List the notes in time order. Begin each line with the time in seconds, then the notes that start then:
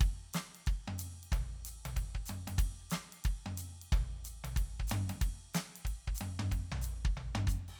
0.01 kick, ride
0.34 snare, hi-hat pedal, ride
0.55 ride
0.67 kick, ride
0.88 high tom
0.99 hi-hat pedal, ride
1.23 ride
1.32 kick, floor tom, ride
1.65 hi-hat pedal, ride
1.86 floor tom, ride
1.97 kick, ride
2.15 kick
2.26 hi-hat pedal, high tom, ride
2.48 high tom, ride
2.59 kick, ride
2.82 kick
2.90 snare, hi-hat pedal, ride
2.96 kick
3.13 ride
3.24 kick, ride
3.46 high tom
3.58 hi-hat pedal, ride
3.65 kick
3.82 ride
3.92 kick, floor tom, ride
4.13 kick
4.25 hi-hat pedal, ride
4.44 floor tom, ride
4.57 kick, ride
4.80 kick
4.88 hi-hat pedal, ride
4.92 high tom
5.10 high tom, ride
5.22 kick, ride
5.54 snare, hi-hat pedal, ride
5.76 ride
5.85 kick, ride
6.08 kick
6.15 hi-hat pedal, ride
6.21 high tom
6.40 high tom
6.52 kick, ride
6.72 floor tom
6.82 hi-hat pedal, ride
7.05 kick
7.17 floor tom
7.35 high tom
7.47 kick, hi-hat pedal
7.69 ride